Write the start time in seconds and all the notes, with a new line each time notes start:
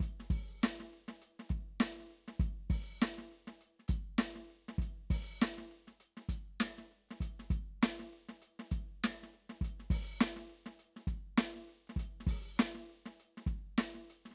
0.01 closed hi-hat, kick
0.21 snare
0.31 kick, open hi-hat
0.63 closed hi-hat, snare, hi-hat pedal
0.81 snare
0.94 closed hi-hat
1.09 snare, closed hi-hat
1.22 closed hi-hat
1.40 snare
1.50 kick, closed hi-hat
1.81 closed hi-hat, snare
2.01 snare
2.11 closed hi-hat
2.29 snare, closed hi-hat
2.40 closed hi-hat, kick
2.71 open hi-hat, kick
3.01 closed hi-hat, snare, hi-hat pedal
3.19 snare
3.33 closed hi-hat
3.48 snare, closed hi-hat
3.62 closed hi-hat
3.80 snare
3.89 closed hi-hat, kick
4.19 closed hi-hat, snare
4.36 snare
4.51 closed hi-hat
4.69 snare, closed hi-hat
4.79 closed hi-hat, kick
5.11 open hi-hat, kick
5.41 closed hi-hat, snare, hi-hat pedal
5.59 snare
5.72 closed hi-hat
5.88 snare, closed hi-hat
6.01 closed hi-hat
6.18 snare
6.29 closed hi-hat, kick
6.61 closed hi-hat, snare
6.79 snare
6.92 closed hi-hat
7.09 snare, closed hi-hat
7.21 closed hi-hat, kick
7.40 snare
7.51 open hi-hat, kick
7.83 closed hi-hat, snare, hi-hat pedal
8.00 snare
8.14 closed hi-hat
8.29 snare, closed hi-hat
8.43 closed hi-hat
8.60 snare
8.72 closed hi-hat, kick
9.04 closed hi-hat, snare
9.24 snare
9.35 closed hi-hat
9.50 snare, closed hi-hat
9.62 closed hi-hat, kick
9.80 snare
9.91 open hi-hat, kick
10.20 closed hi-hat, snare, hi-hat pedal
10.37 snare
10.50 closed hi-hat
10.67 snare, closed hi-hat
10.80 closed hi-hat
10.97 snare
11.08 kick, closed hi-hat
11.38 closed hi-hat, snare
11.56 snare
11.70 closed hi-hat
11.88 snare, closed hi-hat
11.97 closed hi-hat, kick
12.21 snare
12.28 open hi-hat, kick
12.58 closed hi-hat, snare, hi-hat pedal
12.75 snare
12.91 closed hi-hat
13.06 snare, closed hi-hat
13.21 closed hi-hat
13.38 snare
13.47 kick, closed hi-hat
13.79 closed hi-hat, snare
13.95 snare
14.11 closed hi-hat
14.26 snare
14.32 snare